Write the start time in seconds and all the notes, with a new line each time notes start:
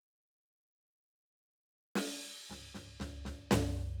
1.95 snare, crash
2.50 snare, floor tom
2.74 snare, floor tom
3.00 snare, floor tom
3.25 snare, floor tom
3.51 snare, floor tom